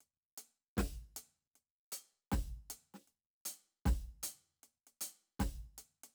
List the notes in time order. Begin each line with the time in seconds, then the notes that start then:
0.01 closed hi-hat
0.38 closed hi-hat
0.77 kick, snare, closed hi-hat
1.17 closed hi-hat
1.56 closed hi-hat
1.92 closed hi-hat
2.32 kick, snare, closed hi-hat
2.71 closed hi-hat
2.94 snare
3.08 closed hi-hat
3.46 closed hi-hat
3.86 kick, snare, closed hi-hat
4.23 closed hi-hat
4.64 closed hi-hat
4.87 closed hi-hat
5.01 closed hi-hat
5.40 kick, snare, closed hi-hat
5.78 closed hi-hat
6.04 closed hi-hat